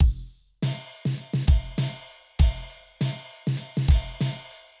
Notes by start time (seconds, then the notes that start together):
0.00 kick, crash
0.63 snare, ride
0.90 ride
1.05 snare
1.18 ride
1.34 snare
1.48 kick, ride
1.78 snare, ride
2.10 ride
2.39 kick, ride
2.70 ride
3.01 snare, ride
3.31 ride
3.47 snare
3.57 ride
3.77 snare
3.88 kick, ride
4.21 snare, ride
4.51 ride